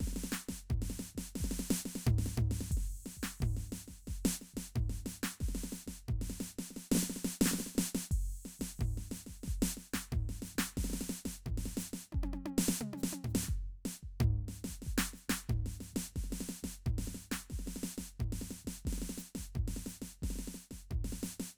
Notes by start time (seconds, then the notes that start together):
0.01 kick, snare
0.08 snare
0.13 snare
0.17 snare
0.24 snare
0.33 snare, hi-hat pedal
0.49 kick, snare
0.71 kick, floor tom
0.82 snare
0.90 snare
1.00 snare, hi-hat pedal
1.16 kick, snare
1.36 snare
1.41 kick, snare
1.52 snare
1.60 snare
1.70 snare, hi-hat pedal
1.79 kick
1.86 snare
1.96 snare
2.07 kick, floor tom
2.19 snare
2.27 snare
2.38 kick, floor tom
2.52 snare
2.61 snare
2.72 kick, crash
2.78 snare
3.06 snare
3.18 kick
3.24 snare
3.41 kick, floor tom
3.57 snare
3.73 snare, hi-hat pedal
3.88 kick, snare
4.08 kick, snare
4.26 snare
4.40 snare, hi-hat pedal
4.54 kick, snare
4.76 kick, floor tom
4.90 snare
5.07 snare, hi-hat pedal
5.24 snare
5.41 kick, snare
5.49 snare
5.55 snare
5.64 snare
5.73 snare, hi-hat pedal
5.87 kick, snare
6.09 kick, floor tom
6.22 snare
6.30 snare
6.41 snare, hi-hat pedal
6.59 snare
6.71 snare
6.77 snare
6.92 snare
6.96 snare
6.97 snare
7.03 snare
7.10 snare
7.17 snare
7.25 snare
7.42 snare
7.46 snare
7.52 snare
7.54 snare
7.59 snare
7.67 snare
7.76 snare
7.79 snare
7.95 snare
8.12 kick, crash
8.46 snare
8.60 kick, snare
8.80 kick, floor tom
8.98 snare
9.12 snare, hi-hat pedal
9.27 kick, snare
9.44 snare
9.48 kick
9.63 snare
9.78 snare, hi-hat pedal
9.94 kick, snare
10.13 kick, floor tom
10.30 snare
10.43 snare, hi-hat pedal
10.56 kick, snare
10.78 kick, snare
10.85 snare
10.90 snare
10.94 snare
11.01 snare
11.10 snare, hi-hat pedal
11.26 kick, snare
11.47 kick, floor tom
11.58 snare
11.66 snare
11.78 snare, hi-hat pedal
11.94 snare
12.13 kick, high tom
12.24 high tom
12.34 high tom
12.46 high tom
12.59 snare
12.69 snare
12.78 hi-hat pedal, mid tom
12.94 high tom
12.98 hi-hat pedal
13.04 snare
13.13 high tom
13.25 floor tom, hi-hat pedal
13.36 snare
13.44 snare
13.49 kick
13.86 snare, hi-hat pedal
14.04 kick
14.21 kick, floor tom
14.49 snare
14.54 hi-hat pedal
14.65 snare
14.69 kick
14.83 snare
14.87 kick
14.98 snare
15.14 snare, hi-hat pedal
15.29 kick, snare
15.50 kick, floor tom
15.67 snare
15.81 snare, hi-hat pedal
15.94 kick, snare
16.17 kick, snare
16.24 snare
16.31 snare
16.33 snare
16.41 snare
16.46 snare, hi-hat pedal
16.64 kick, snare
16.87 kick, floor tom
16.99 snare
17.08 snare
17.15 snare
17.19 hi-hat pedal
17.32 kick, snare
17.51 kick, snare
17.60 snare
17.67 snare
17.77 snare
17.84 snare, hi-hat pedal
17.98 kick, snare
18.20 kick, floor tom
18.33 snare
18.42 snare
18.51 snare, hi-hat pedal
18.65 kick, snare
18.86 kick, snare
18.93 snare
18.98 snare
19.02 snare
19.10 snare
19.18 snare, hi-hat pedal
19.36 kick, snare
19.56 kick, floor tom
19.68 snare
19.77 snare
19.87 snare, hi-hat pedal
20.02 kick, snare
20.23 kick, snare
20.31 snare
20.36 snare
20.39 snare
20.48 snare
20.55 snare, hi-hat pedal
20.72 kick, snare
20.91 kick, floor tom
21.05 snare
21.13 snare
21.24 snare, hi-hat pedal
21.40 snare